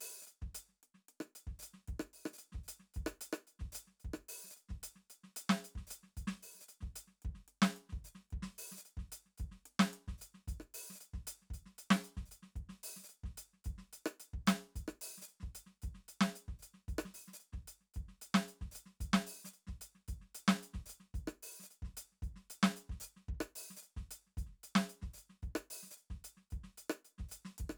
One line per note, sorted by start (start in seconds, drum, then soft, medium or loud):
0.01 open hi-hat medium
0.22 hi-hat pedal soft
0.27 closed hi-hat soft
0.42 kick soft
0.42 snare soft
0.55 closed hi-hat medium
0.69 snare soft
0.83 closed hi-hat soft
0.95 snare soft
1.09 closed hi-hat soft
1.21 cross-stick medium
1.35 closed hi-hat soft
1.47 kick soft
1.47 snare soft
1.59 closed hi-hat medium
1.59 hi-hat pedal medium
1.74 snare soft
1.88 kick soft
1.88 closed hi-hat soft
2.00 cross-stick medium
2.14 open hi-hat soft
2.26 cross-stick medium
2.34 hi-hat pedal soft
2.39 closed hi-hat soft
2.52 kick soft
2.52 snare soft
2.64 hi-hat pedal soft
2.68 closed hi-hat medium
2.80 snare soft
2.94 closed hi-hat soft
2.94 kick soft
3.02 kick soft
3.07 cross-stick medium
3.21 closed hi-hat medium
3.33 cross-stick medium
3.47 closed hi-hat soft
3.59 kick soft
3.59 snare soft
3.72 closed hi-hat medium
3.72 hi-hat pedal medium
3.87 snare soft
4.00 closed hi-hat soft
4.05 kick soft
4.14 cross-stick medium
4.29 open hi-hat medium
4.44 snare soft
4.51 hi-hat pedal medium
4.56 closed hi-hat soft
4.69 kick soft
4.69 snare soft
4.76 kick soft
4.83 closed hi-hat medium
4.96 snare soft
5.10 closed hi-hat soft
5.24 snare soft
5.36 closed hi-hat medium
5.50 snare medium
5.65 closed hi-hat soft
5.75 kick soft
5.75 snare soft
5.87 closed hi-hat medium
5.87 hi-hat pedal soft
6.03 snare soft
6.17 closed hi-hat soft
6.17 kick soft
6.28 snare medium
6.43 open hi-hat medium
6.55 snare soft
6.61 hi-hat pedal soft
6.69 closed hi-hat soft
6.81 kick soft
6.81 snare soft
6.96 closed hi-hat medium
7.08 snare soft
7.22 kick soft
7.22 closed hi-hat soft
7.35 snare soft
7.48 closed hi-hat soft
7.62 snare loud
7.77 closed hi-hat soft
7.90 kick soft
7.90 snare soft
7.98 kick soft
8.05 open hi-hat soft
8.05 hi-hat pedal soft
8.15 snare soft
8.31 kick soft
8.31 closed hi-hat soft
8.43 snare medium
8.58 open hi-hat medium
8.72 snare soft
8.78 hi-hat pedal medium
8.85 closed hi-hat soft
8.97 kick soft
8.97 snare soft
9.12 closed hi-hat medium
9.26 snare soft
9.38 closed hi-hat soft
9.38 kick soft
9.52 snare soft
9.66 closed hi-hat soft
9.80 snare loud
9.94 closed hi-hat soft
10.08 kick soft
10.08 snare soft
10.18 closed hi-hat soft
10.18 hi-hat pedal soft
10.34 snare soft
10.48 closed hi-hat soft
10.48 kick soft
10.54 kick soft
10.60 cross-stick soft
10.74 open hi-hat medium
10.90 snare soft
10.95 hi-hat pedal medium
11.01 closed hi-hat soft
11.14 kick soft
11.14 snare soft
11.27 closed hi-hat medium
11.42 snare soft
11.50 closed hi-hat soft
11.50 kick soft
11.66 snare soft
11.78 closed hi-hat medium
11.91 snare loud
11.96 cross-stick soft
12.04 closed hi-hat soft
12.17 kick soft
12.17 snare soft
12.22 kick soft
12.22 hi-hat pedal soft
12.31 closed hi-hat soft
12.43 snare soft
12.56 kick soft
12.56 closed hi-hat soft
12.69 snare soft
12.84 open hi-hat medium
12.97 snare soft
13.04 hi-hat pedal medium
13.09 closed hi-hat soft
13.24 kick soft
13.24 snare soft
13.38 closed hi-hat medium
13.54 snare soft
13.65 closed hi-hat soft
13.65 kick soft
13.78 snare soft
13.93 closed hi-hat medium
14.06 cross-stick medium
14.20 closed hi-hat medium
14.34 kick soft
14.47 closed hi-hat medium
14.47 snare loud
14.47 hi-hat pedal medium
14.76 closed hi-hat soft
14.76 kick soft
14.83 kick soft
14.88 cross-stick medium
15.01 open hi-hat medium
15.18 snare soft
15.22 hi-hat pedal medium
15.28 closed hi-hat soft
15.40 kick soft
15.40 snare soft
15.55 closed hi-hat medium
15.67 snare soft
15.82 closed hi-hat soft
15.82 kick soft
15.95 snare soft
16.08 closed hi-hat medium
16.21 snare medium
16.28 snare soft
16.36 closed hi-hat soft
16.48 kick soft
16.48 snare soft
16.53 kick soft
16.59 closed hi-hat soft
16.59 hi-hat pedal soft
16.74 snare soft
16.88 closed hi-hat soft
16.88 kick soft
16.99 cross-stick medium
17.05 snare soft
17.14 open hi-hat medium
17.28 snare soft
17.34 hi-hat pedal medium
17.40 closed hi-hat soft
17.53 kick soft
17.53 snare soft
17.59 kick soft
17.68 closed hi-hat medium
17.81 snare soft
17.94 closed hi-hat soft
17.94 kick soft
18.09 snare soft
18.22 closed hi-hat medium
18.35 snare loud
18.48 closed hi-hat soft
18.61 kick soft
18.61 snare soft
18.72 closed hi-hat medium
18.72 hi-hat pedal soft
18.86 snare soft
19.01 closed hi-hat soft
19.01 kick soft
19.14 snare loud
19.27 open hi-hat medium
19.45 snare soft
19.45 hi-hat pedal medium
19.54 closed hi-hat soft
19.67 kick soft
19.67 snare soft
19.81 closed hi-hat medium
19.95 snare soft
20.08 closed hi-hat soft
20.08 kick soft
20.22 snare soft
20.35 closed hi-hat medium
20.48 snare loud
20.63 closed hi-hat soft
20.74 kick soft
20.74 snare soft
20.80 kick soft
20.86 closed hi-hat soft
20.86 hi-hat pedal medium
21.00 snare soft
21.14 closed hi-hat soft
21.14 kick soft
21.28 cross-stick medium
21.43 open hi-hat medium
21.60 snare soft
21.60 hi-hat pedal medium
21.71 closed hi-hat soft
21.82 kick soft
21.82 snare soft
21.87 kick soft
21.97 closed hi-hat medium
22.12 snare soft
22.22 closed hi-hat soft
22.22 kick soft
22.36 snare soft
22.50 closed hi-hat medium
22.63 snare loud
22.76 closed hi-hat soft
22.90 kick soft
22.90 snare soft
23.00 closed hi-hat soft
23.00 hi-hat pedal medium
23.17 snare soft
23.29 kick soft
23.35 kick soft
23.41 cross-stick medium
23.56 open hi-hat medium
23.70 snare soft
23.77 hi-hat pedal medium
23.83 closed hi-hat soft
23.97 kick soft
23.97 snare soft
24.11 closed hi-hat medium
24.27 snare soft
24.37 closed hi-hat soft
24.37 kick soft
24.47 snare soft
24.53 snare soft
24.64 closed hi-hat soft
24.76 snare loud
24.81 snare soft
24.89 closed hi-hat soft
25.02 kick soft
25.02 snare soft
25.14 closed hi-hat soft
25.14 hi-hat pedal soft
25.30 snare soft
25.43 closed hi-hat soft
25.43 kick soft
25.56 cross-stick medium
25.71 open hi-hat medium
25.83 snare soft
25.91 hi-hat pedal medium
25.97 closed hi-hat soft
26.10 kick soft
26.10 snare soft
26.24 closed hi-hat medium
26.37 snare soft
26.51 closed hi-hat soft
26.51 kick soft
26.64 snare soft
26.78 closed hi-hat soft
26.90 cross-stick medium
27.05 closed hi-hat soft
27.18 kick soft
27.18 snare soft
27.29 closed hi-hat medium
27.29 hi-hat pedal soft
27.45 snare soft
27.58 kick soft
27.58 closed hi-hat medium
27.70 cross-stick medium